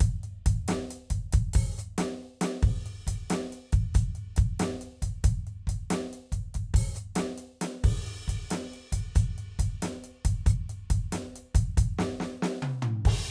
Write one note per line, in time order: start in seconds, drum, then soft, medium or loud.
0.01 kick loud
0.01 closed hi-hat loud
0.24 closed hi-hat medium
0.46 kick loud
0.46 closed hi-hat loud
0.68 snare loud
0.68 closed hi-hat loud
0.91 closed hi-hat loud
1.11 kick medium
1.11 closed hi-hat loud
1.33 kick loud
1.33 closed hi-hat loud
1.54 kick loud
1.54 open hi-hat loud
1.79 hi-hat pedal loud
1.99 snare loud
1.99 closed hi-hat loud
2.42 snare loud
2.42 closed hi-hat loud
2.63 kick loud
2.63 crash medium
2.86 closed hi-hat medium
3.07 kick medium
3.07 closed hi-hat loud
3.30 snare loud
3.30 closed hi-hat loud
3.53 closed hi-hat medium
3.73 kick loud
3.73 closed hi-hat medium
3.95 closed hi-hat loud
3.95 kick loud
4.16 closed hi-hat medium
4.37 kick loud
4.37 closed hi-hat loud
4.60 snare loud
4.60 closed hi-hat loud
4.82 closed hi-hat medium
5.03 kick medium
5.03 closed hi-hat loud
5.24 kick loud
5.24 closed hi-hat loud
5.24 hi-hat pedal soft
5.47 closed hi-hat soft
5.68 kick medium
5.68 closed hi-hat medium
5.91 snare loud
5.91 closed hi-hat loud
6.13 closed hi-hat medium
6.32 kick medium
6.32 closed hi-hat medium
6.55 kick medium
6.55 closed hi-hat medium
6.74 kick loud
6.74 open hi-hat loud
6.96 hi-hat pedal loud
7.16 snare loud
7.16 closed hi-hat loud
7.38 closed hi-hat medium
7.62 snare loud
7.62 closed hi-hat loud
7.84 kick loud
7.84 crash medium
8.07 closed hi-hat medium
8.28 kick medium
8.28 closed hi-hat loud
8.51 snare loud
8.51 closed hi-hat loud
8.74 closed hi-hat soft
8.93 kick medium
8.93 closed hi-hat loud
9.16 closed hi-hat loud
9.16 kick loud
9.38 closed hi-hat medium
9.60 kick loud
9.60 closed hi-hat loud
9.83 snare loud
9.83 closed hi-hat loud
10.04 closed hi-hat medium
10.25 kick loud
10.25 closed hi-hat loud
10.47 kick loud
10.47 hi-hat pedal medium
10.47 open hi-hat loud
10.70 closed hi-hat medium
10.91 kick loud
10.91 closed hi-hat loud
11.13 snare loud
11.13 closed hi-hat loud
11.36 closed hi-hat medium
11.55 kick loud
11.55 closed hi-hat loud
11.78 kick loud
11.78 closed hi-hat loud
11.99 snare loud
12.21 snare loud
12.43 snare loud
12.63 high tom loud
12.83 mid tom loud
13.06 kick loud
13.06 crash medium
13.06 crash loud